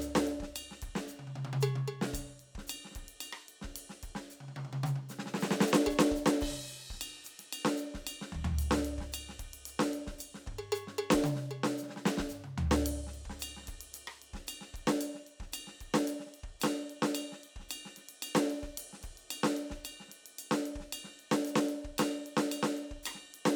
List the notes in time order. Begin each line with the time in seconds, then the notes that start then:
0.01 hi-hat pedal, ride bell
0.15 snare
0.27 ride
0.40 kick, snare
0.55 hi-hat pedal, ride bell
0.71 snare
0.82 kick, ride
0.88 kick
0.95 snare
1.08 hi-hat pedal
1.19 high tom
1.27 high tom
1.35 high tom
1.45 high tom
1.53 high tom
1.61 hi-hat pedal, percussion
1.75 high tom
1.88 percussion
2.01 snare
2.13 kick, hi-hat pedal, ride bell
2.20 kick
2.26 kick, cross-stick
2.39 ride
2.55 kick, snare
2.67 hi-hat pedal, ride bell
2.84 snare
2.91 snare
2.95 kick, snare, ride
3.01 kick, snare
3.08 ride
3.20 hi-hat pedal, ride bell
3.32 cross-stick
3.48 ride
3.61 kick, snare
3.76 hi-hat pedal, ride
3.89 snare
4.03 kick, ride
4.15 snare
4.30 hi-hat pedal
4.40 high tom
4.48 high tom
4.56 high tom
4.65 high tom
4.73 high tom
4.83 hi-hat pedal, high tom
4.95 high tom
5.09 snare, hi-hat pedal
5.19 snare
5.26 snare
5.34 snare
5.40 snare, hi-hat pedal
5.50 snare
5.60 snare
5.67 hi-hat pedal
5.73 snare
5.86 kick, hi-hat pedal, percussion
5.93 kick
5.99 snare
6.11 kick
6.16 kick, hi-hat pedal
6.26 snare
6.33 cross-stick
6.41 kick, crash
6.50 kick, high tom
6.56 kick
6.68 hi-hat pedal
6.90 kick, snare
7.01 ride bell
7.24 hi-hat pedal, ride
7.39 snare, ride
7.52 ride bell
7.65 snare
7.76 hi-hat pedal, ride
7.94 kick, snare
8.07 hi-hat pedal, ride bell
8.21 snare
8.32 kick, floor tom
8.40 kick
8.44 floor tom
8.58 hi-hat pedal, ride
8.71 snare
8.76 snare
8.85 ride
8.98 kick, snare
9.12 hi-hat pedal, ride bell
9.29 snare
9.39 kick, ride
9.45 kick
9.53 ride
9.65 hi-hat pedal, ride
9.79 snare
9.93 ride
10.06 kick, snare
10.15 kick, hi-hat pedal
10.20 ride bell
10.34 snare
10.46 kick, mid tom
10.53 kick
10.58 percussion
10.72 hi-hat pedal, percussion
10.87 snare
10.98 percussion
11.10 kick, snare
11.24 hi-hat pedal, high tom
11.35 snare
11.51 percussion
11.63 snare
11.76 snare, hi-hat pedal
11.82 snare
11.87 snare
11.89 snare
11.96 snare
12.05 snare
12.17 kick, snare
12.29 hi-hat pedal, mid tom
12.44 closed hi-hat, high tom
12.58 floor tom
12.71 snare
12.85 hi-hat pedal, ride
13.07 snare
13.13 ride
13.25 kick
13.29 snare
13.36 snare, hi-hat pedal
13.42 ride bell
13.56 snare
13.62 snare
13.66 kick, snare, ride
13.73 kick
13.81 ride
13.94 hi-hat pedal, ride
14.07 cross-stick
14.22 ride
14.33 kick, snare
14.47 hi-hat pedal, ride bell
14.61 snare
14.74 kick, ride
14.87 snare
15.01 hi-hat pedal, ride bell
15.14 snare
15.26 ride
15.40 kick, snare
15.52 hi-hat pedal, ride bell
15.67 snare
15.80 kick, ride
15.94 snare
16.07 hi-hat pedal, ride
16.19 snare
16.26 snare
16.34 ride
16.43 kick
16.60 snare, hi-hat pedal, ride bell
16.90 ride
17.02 snare
17.15 hi-hat pedal, ride bell
17.32 snare
17.43 ride
17.56 kick, snare
17.68 kick, hi-hat pedal, ride bell
17.85 snare
17.96 snare, ride
18.09 ride
18.22 hi-hat pedal, ride bell
18.35 snare
18.50 ride
18.62 kick, snare
18.77 hi-hat pedal, ride
18.93 snare
19.00 kick, snare, ride
19.17 ride
19.30 hi-hat pedal, ride bell
19.43 snare
19.56 ride
19.70 kick, snare
19.84 hi-hat pedal, ride bell
20.00 snare
20.08 snare, ride
20.26 ride
20.38 hi-hat pedal, ride bell
20.51 snare
20.66 ride
20.75 kick
20.80 snare
20.92 hi-hat pedal, ride bell
21.04 snare
21.19 ride
21.31 snare
21.45 hi-hat pedal, ride
21.55 snare
21.68 ride
21.84 kick
21.98 snare, hi-hat pedal, ride bell
22.26 ride
22.37 snare
22.51 hi-hat pedal, ride bell
22.63 snare
22.77 ride
22.91 kick
23.03 cross-stick, hi-hat pedal, ride bell
23.15 snare
23.34 ride
23.45 snare